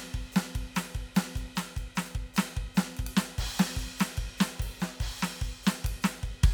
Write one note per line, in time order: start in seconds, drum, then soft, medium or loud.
0.15 kick medium
0.33 snare loud
0.33 hi-hat pedal medium
0.37 ride loud
0.56 kick medium
0.56 ride medium
0.76 snare loud
0.76 hi-hat pedal medium
0.76 ride loud
0.96 kick medium
0.96 ride soft
1.16 snare loud
1.16 hi-hat pedal medium
1.16 ride loud
1.36 kick medium
1.36 ride bell medium
1.56 snare loud
1.56 hi-hat pedal medium
1.56 ride bell medium
1.77 kick medium
1.77 ride bell soft
1.96 snare loud
1.96 hi-hat pedal medium
2.07 ride bell medium
2.16 kick medium
2.35 snare loud
2.35 hi-hat pedal medium
2.35 ride bell loud
2.58 kick medium
2.76 snare loud
2.76 hi-hat pedal medium
2.76 ride bell medium
2.98 kick medium
2.98 ride medium
3.08 ride loud
3.17 snare loud
3.17 hi-hat pedal medium
3.39 kick medium
3.39 crash loud
3.57 snare loud
3.57 hi-hat pedal medium
3.57 ride loud
3.77 kick medium
3.77 ride medium
3.98 snare loud
3.98 hi-hat pedal medium
3.98 ride loud
4.18 kick medium
4.18 ride medium
4.39 snare loud
4.39 hi-hat pedal medium
4.60 kick medium
4.60 crash loud
4.81 snare medium
4.81 hi-hat pedal medium
5.01 kick medium
5.01 crash loud
5.19 hi-hat pedal medium
5.23 snare loud
5.42 kick medium
5.42 crash soft
5.64 snare loud
5.64 hi-hat pedal medium
5.85 kick medium
5.85 ride loud
6.03 snare loud
6.03 hi-hat pedal medium
6.24 kick medium
6.24 crash soft
6.44 kick loud
6.44 crash medium